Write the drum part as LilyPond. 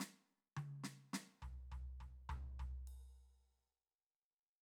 \new DrumStaff \drummode { \time 4/4 \tempo 4 = 104 <sn hhp>4 tommh8 sn8 sn8 tomfh8 tomfh8 tomfh8 | tomfh8 tomfh8 cymc4 r4 r4 | }